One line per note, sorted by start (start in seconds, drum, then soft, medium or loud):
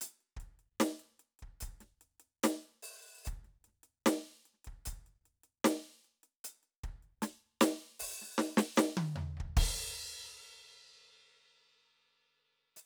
0.01 closed hi-hat medium
0.20 closed hi-hat soft
0.37 kick soft
0.37 closed hi-hat soft
0.59 closed hi-hat soft
0.80 closed hi-hat medium
0.80 snare loud
0.99 closed hi-hat soft
1.19 closed hi-hat soft
1.39 kick soft
1.39 closed hi-hat soft
1.60 closed hi-hat medium
1.60 kick soft
1.80 snare soft
1.80 closed hi-hat soft
2.01 closed hi-hat soft
2.20 closed hi-hat soft
2.43 closed hi-hat medium
2.43 snare loud
2.63 closed hi-hat soft
2.83 open hi-hat medium
3.25 open hi-hat medium
3.25 kick medium
3.25 hi-hat pedal medium
3.43 snare soft
3.43 closed hi-hat soft
3.64 snare soft
3.64 closed hi-hat soft
3.83 closed hi-hat soft
4.06 closed hi-hat medium
4.06 snare loud
4.45 closed hi-hat soft
4.54 snare soft
4.65 kick soft
4.65 closed hi-hat soft
4.85 closed hi-hat medium
4.85 kick soft
5.06 closed hi-hat soft
5.25 closed hi-hat soft
5.44 closed hi-hat soft
5.64 closed hi-hat medium
5.64 snare loud
5.84 closed hi-hat soft
6.05 closed hi-hat soft
6.23 closed hi-hat soft
6.44 closed hi-hat medium
6.63 closed hi-hat soft
6.84 kick soft
6.84 snare soft
6.84 closed hi-hat soft
7.03 closed hi-hat soft
7.22 closed hi-hat medium
7.22 snare medium
7.61 closed hi-hat medium
7.61 snare loud
7.78 open hi-hat soft
8.00 open hi-hat loud
8.00 kick soft
8.21 snare soft
8.27 snare soft
8.38 snare medium
8.57 snare loud
8.76 snare loud
8.76 hi-hat pedal medium
8.97 high tom loud
9.16 floor tom medium
9.37 kick soft
9.37 floor tom soft
9.57 kick loud
9.57 crash loud
12.76 hi-hat pedal medium